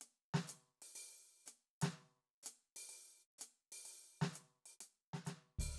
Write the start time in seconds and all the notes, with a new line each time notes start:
0.01 closed hi-hat
0.34 snare
0.47 closed hi-hat, hi-hat pedal
0.82 open hi-hat
0.95 open hi-hat
1.46 closed hi-hat, hi-hat pedal
1.81 snare, open hi-hat
2.43 closed hi-hat, hi-hat pedal
2.76 open hi-hat
2.89 open hi-hat
3.38 closed hi-hat, hi-hat pedal
3.72 open hi-hat
3.85 open hi-hat
4.21 snare
4.33 closed hi-hat, hi-hat pedal
4.66 open hi-hat
4.80 open hi-hat
5.13 snare
5.25 snare, closed hi-hat, hi-hat pedal
5.59 open hi-hat, kick